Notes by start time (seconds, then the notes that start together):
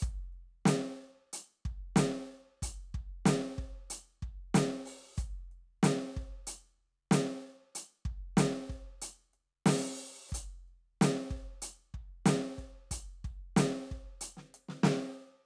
0.01 kick, hi-hat pedal
0.33 closed hi-hat
0.66 closed hi-hat, snare
1.33 closed hi-hat
1.65 kick, closed hi-hat
1.96 closed hi-hat, snare
2.62 closed hi-hat, kick
2.94 kick, closed hi-hat
3.26 closed hi-hat, snare
3.58 kick
3.90 closed hi-hat
4.22 kick, closed hi-hat
4.54 closed hi-hat, snare
4.85 open hi-hat
5.17 closed hi-hat, kick, hi-hat pedal
5.51 closed hi-hat
5.83 closed hi-hat, snare
6.16 kick, closed hi-hat
6.47 closed hi-hat
7.11 closed hi-hat, snare
7.42 closed hi-hat
7.75 closed hi-hat
8.05 kick, closed hi-hat
8.37 closed hi-hat, snare
8.44 snare
8.69 kick, closed hi-hat
9.02 closed hi-hat
9.33 closed hi-hat
9.66 open hi-hat, snare
10.29 kick, hi-hat pedal
10.34 closed hi-hat
10.68 closed hi-hat
11.01 closed hi-hat, snare
11.31 kick
11.62 closed hi-hat
11.94 kick, closed hi-hat
12.26 closed hi-hat, snare
12.34 snare
12.58 kick, closed hi-hat
12.91 closed hi-hat, kick
13.24 kick, closed hi-hat
13.57 closed hi-hat, snare
13.91 kick, closed hi-hat
14.21 closed hi-hat
14.37 snare
14.54 closed hi-hat
14.69 snare
14.83 snare